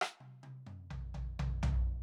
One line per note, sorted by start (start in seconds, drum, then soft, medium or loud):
0.01 cross-stick loud
0.23 high tom soft
0.46 high tom medium
0.69 mid tom medium
0.93 floor tom medium
1.17 floor tom medium
1.42 floor tom loud
1.66 floor tom loud